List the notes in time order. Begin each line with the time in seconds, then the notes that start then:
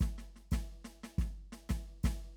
0.01 kick, snare, hi-hat pedal
0.19 snare
0.37 snare
0.52 kick, snare, hi-hat pedal
0.85 snare
1.04 snare
1.19 kick, snare, hi-hat pedal
1.53 snare
1.70 kick, snare, hi-hat pedal
2.04 kick, snare, hi-hat pedal